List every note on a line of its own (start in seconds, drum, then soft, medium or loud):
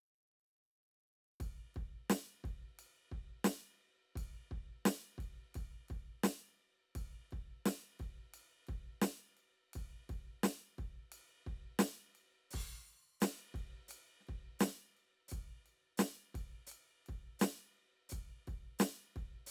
1.40 kick soft
1.40 ride soft
1.74 kick soft
1.74 ride soft
2.10 snare loud
2.10 ride medium
2.44 kick soft
2.44 ride soft
2.79 ride medium
3.11 kick soft
3.11 ride soft
3.44 snare loud
3.44 ride medium
4.16 kick soft
4.16 ride soft
4.51 kick soft
4.85 snare loud
4.85 ride medium
5.18 kick soft
5.18 ride soft
5.54 kick soft
5.54 ride soft
5.89 kick soft
5.89 ride soft
6.24 snare loud
6.24 ride soft
6.95 kick soft
6.95 ride soft
7.31 kick soft
7.31 ride soft
7.66 snare loud
7.66 ride medium
7.99 kick soft
7.99 ride soft
8.34 ride medium
8.67 kick soft
8.67 ride soft
9.02 snare loud
9.02 ride soft
9.37 ride soft
9.73 kick soft
9.73 ride medium
10.09 kick soft
10.09 ride soft
10.43 snare loud
10.43 ride soft
10.78 kick soft
10.78 ride soft
11.12 ride medium
11.46 kick soft
11.46 ride soft
11.79 snare loud
11.79 ride medium
12.15 ride soft
12.51 kick soft
12.51 hi-hat pedal soft
12.51 crash soft
12.85 ride soft
13.20 snare loud
13.20 hi-hat pedal soft
13.20 ride medium
13.54 kick soft
13.54 ride soft
13.88 hi-hat pedal soft
13.88 ride medium
14.20 snare soft
14.27 kick soft
14.27 ride soft
14.59 snare loud
14.59 hi-hat pedal soft
14.59 ride soft
14.67 snare soft
14.97 ride soft
15.28 kick soft
15.28 hi-hat pedal soft
15.28 ride soft
15.66 ride soft
15.97 snare loud
15.97 hi-hat pedal medium
15.97 ride soft
16.34 kick soft
16.34 ride soft
16.67 hi-hat pedal medium
16.72 ride soft
17.06 kick soft
17.06 ride soft
17.39 snare loud
17.39 hi-hat pedal medium
17.39 ride medium
18.09 kick soft
18.09 hi-hat pedal medium
18.09 ride soft
18.47 kick soft
18.47 ride soft
18.79 snare loud
18.79 hi-hat pedal medium
18.79 ride medium
19.16 kick soft
19.16 ride soft
19.46 hi-hat pedal medium